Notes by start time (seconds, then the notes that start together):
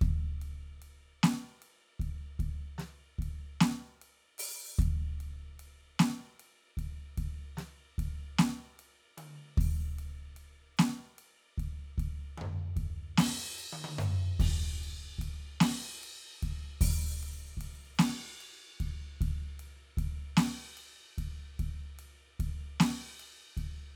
0.01 kick, ride
0.42 ride
0.82 ride
1.23 snare, ride
1.36 snare
1.62 ride
2.00 kick, ride
2.39 kick, ride
2.78 snare, ride
3.19 kick, ride
3.60 snare
3.73 snare
4.01 ride
4.38 open hi-hat, ride
4.79 kick, hi-hat pedal, ride
5.20 ride
5.59 ride
5.99 snare, ride
6.13 snare
6.15 snare
6.40 ride
6.77 kick, ride
7.17 kick, ride
7.57 snare, ride
7.98 kick, ride
8.38 snare, ride
8.79 ride
9.18 high tom, ride
9.57 open hi-hat, kick, ride
9.98 ride
10.36 ride
10.77 snare, hi-hat pedal, ride
11.18 ride
11.58 kick, ride
11.98 kick, ride
12.38 floor tom, high tom
12.76 kick, ride
13.18 snare, crash
13.58 hi-hat pedal
13.72 high tom
13.84 high tom
13.98 floor tom, hi-hat pedal
14.39 kick, ride, crash
14.83 ride
15.19 kick, ride
15.60 snare, crash
16.03 ride
16.43 kick, ride
16.81 open hi-hat, kick, ride
17.23 ride
17.57 kick, ride
17.95 snare, hi-hat pedal
17.99 crash
18.41 ride
18.80 kick, ride
19.21 kick, ride
19.59 ride
19.97 kick, ride
20.37 snare, crash
20.77 ride
21.18 kick, ride
21.59 kick, ride
21.99 ride
22.39 kick, ride
22.80 snare, crash
23.20 ride
23.57 kick, ride